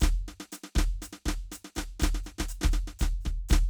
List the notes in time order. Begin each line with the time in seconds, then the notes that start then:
0.01 kick, snare, hi-hat pedal
0.04 snare
0.29 snare
0.41 snare
0.53 snare, hi-hat pedal
0.64 snare
0.76 kick, snare, hi-hat pedal
0.79 snare
1.03 snare, hi-hat pedal
1.13 snare
1.26 kick, snare
1.29 snare
1.52 snare, hi-hat pedal
1.65 snare
1.76 kick, snare, hi-hat pedal
1.79 snare
2.01 kick, snare, hi-hat pedal
2.04 snare
2.15 snare
2.24 snare, hi-hat pedal
2.39 kick, snare
2.41 snare
2.49 hi-hat pedal
2.62 snare
2.64 kick, snare
2.72 snare, hi-hat pedal
2.88 snare
3.00 kick, snare, hi-hat pedal
3.22 hi-hat pedal
3.26 kick, snare
3.50 kick, snare, hi-hat pedal
3.54 snare